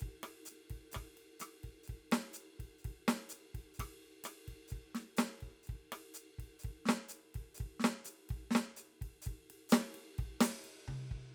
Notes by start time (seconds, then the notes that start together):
0.01 kick, ride
0.08 kick
0.23 cross-stick, ride
0.45 hi-hat pedal, ride
0.51 snare
0.70 kick, ride
0.76 kick
0.92 cross-stick, hi-hat pedal, ride
0.96 kick
1.02 kick
1.17 ride
1.40 cross-stick, hi-hat pedal, ride
1.64 kick, ride
1.69 kick
1.83 hi-hat pedal
1.88 kick, ride
1.94 kick
2.12 snare, ride
2.33 hi-hat pedal, ride
2.60 kick, ride
2.65 kick
2.78 hi-hat pedal
2.85 kick, ride
2.91 kick
3.08 snare, ride
3.14 cross-stick
3.29 hi-hat pedal, ride
3.55 kick, ride
3.60 kick
3.74 hi-hat pedal
3.79 kick, cross-stick, ride
3.85 kick
4.24 cross-stick, hi-hat pedal, ride
4.48 kick, snare, ride
4.53 kick
4.68 hi-hat pedal, ride
4.72 kick
4.77 kick
4.95 snare, ride
5.17 snare, hi-hat pedal, ride
5.41 kick, ride
5.48 kick, snare
5.54 snare
5.63 hi-hat pedal
5.67 kick, ride
5.75 kick
5.92 cross-stick, ride
6.14 hi-hat pedal, ride
6.39 kick, ride
6.44 kick
6.59 hi-hat pedal
6.64 kick, ride
6.70 kick
6.86 snare
6.89 snare
7.09 hi-hat pedal, ride
7.35 kick, ride
7.41 kick
7.55 hi-hat pedal, ride
7.60 kick
7.66 kick
7.80 snare
7.84 snare
8.05 snare, hi-hat pedal, ride
8.08 snare
8.29 kick, ride
8.51 snare
8.55 snare
8.77 hi-hat pedal, ride
8.91 snare
9.01 kick, ride
9.07 kick
9.22 hi-hat pedal
9.26 kick, ride
9.33 kick
9.50 ride
9.69 snare, hi-hat pedal, ride
9.94 ride
10.01 snare
10.08 snare
10.18 kick, ride
10.26 kick
10.41 snare, hi-hat pedal, ride
10.50 snare
10.64 ride
10.88 kick, mid tom
11.11 kick
11.17 kick
11.24 snare